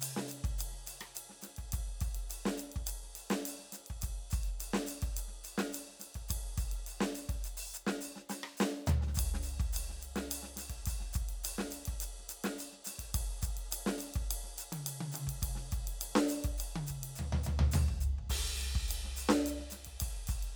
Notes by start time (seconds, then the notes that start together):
0.01 hi-hat pedal, ride
0.16 snare
0.28 hi-hat pedal, ride
0.44 kick, ride
0.58 hi-hat pedal, ride
0.72 snare
0.86 hi-hat pedal, ride
1.01 cross-stick, ride
1.15 hi-hat pedal, ride
1.29 snare
1.42 snare, hi-hat pedal, ride
1.57 kick, ride
1.72 kick, hi-hat pedal, ride
1.86 snare
2.00 kick, hi-hat pedal, ride
2.15 ride
2.30 hi-hat pedal, ride
2.45 snare
2.57 hi-hat pedal, ride
2.72 ride
2.76 kick
2.86 hi-hat pedal, ride
3.02 snare
3.15 hi-hat pedal, ride
3.30 snare, ride
3.45 hi-hat pedal, ride
3.58 snare
3.72 snare, hi-hat pedal, ride
3.86 kick, ride
4.01 kick, hi-hat pedal, ride
4.30 kick, hi-hat pedal, ride
4.43 ride
4.60 hi-hat pedal, ride
4.73 snare
4.86 hi-hat pedal, ride
5.02 kick, ride
5.16 hi-hat pedal, ride
5.27 snare
5.44 hi-hat pedal, ride
5.58 snare, ride
5.73 hi-hat pedal, ride
5.88 snare
5.99 snare, hi-hat pedal, ride
6.15 kick, ride
6.28 kick, hi-hat pedal, ride
6.42 snare
6.57 kick, hi-hat pedal, ride
6.72 ride
6.87 hi-hat pedal, ride
7.00 snare
7.15 hi-hat pedal, ride
7.29 kick, ride
7.44 hi-hat pedal, ride
7.57 open hi-hat
7.74 hi-hat pedal
7.87 snare
8.01 hi-hat pedal
8.16 snare
8.29 snare, hi-hat pedal
8.43 cross-stick
8.57 snare, hi-hat pedal
8.86 floor tom, hi-hat pedal
9.01 snare
9.07 snare
9.13 kick, snare, hi-hat pedal
9.19 ride
9.34 snare
9.43 hi-hat pedal
9.49 ride
9.60 kick, ride
9.73 hi-hat pedal, ride
9.89 snare
10.01 hi-hat pedal, ride
10.16 snare, ride
10.30 hi-hat pedal, ride
10.43 snare
10.56 snare, hi-hat pedal, ride
10.69 kick, ride
10.86 kick, hi-hat pedal, ride
11.00 snare
11.13 kick, hi-hat pedal, ride
11.29 ride
11.44 hi-hat pedal, ride
11.58 snare
11.70 hi-hat pedal, ride
11.85 kick, ride
12.00 hi-hat pedal, ride
12.19 snare
12.29 hi-hat pedal, ride
12.44 snare, ride
12.58 hi-hat pedal, ride bell
12.72 snare
12.84 snare, hi-hat pedal, ride
12.98 kick, ride
13.14 kick, hi-hat pedal, ride
13.42 kick, hi-hat pedal, ride
13.57 ride
13.71 hi-hat pedal, ride
13.86 snare
13.98 hi-hat pedal, ride
14.14 kick, ride
14.30 hi-hat pedal, ride
14.43 snare
14.58 hi-hat pedal, ride
14.72 high tom, ride
14.86 hi-hat pedal, ride
15.00 high tom
15.12 hi-hat pedal, high tom, ride
15.27 kick, ride
15.41 kick, hi-hat pedal, ride
15.55 snare
15.71 kick, hi-hat pedal, ride
15.87 ride
16.00 hi-hat pedal, ride
16.15 snare
16.28 hi-hat pedal, ride
16.44 kick, ride
16.58 hi-hat pedal, ride
16.76 high tom
16.87 kick, hi-hat pedal, ride
17.03 ride
17.15 floor tom, hi-hat pedal
17.32 floor tom
17.43 floor tom, hi-hat pedal
17.59 floor tom
17.71 floor tom, hi-hat pedal
17.88 kick
18.00 hi-hat pedal
18.18 kick
18.29 kick, hi-hat pedal, crash, ride
18.57 hi-hat pedal
18.61 ride
18.75 kick
18.88 hi-hat pedal, ride
19.04 snare
19.16 hi-hat pedal, ride
19.29 snare, ride
19.46 hi-hat pedal, ride
19.59 snare
19.70 snare, hi-hat pedal, ride
19.85 kick, ride
20.00 kick, hi-hat pedal, ride
20.27 kick, hi-hat pedal, ride
20.43 ride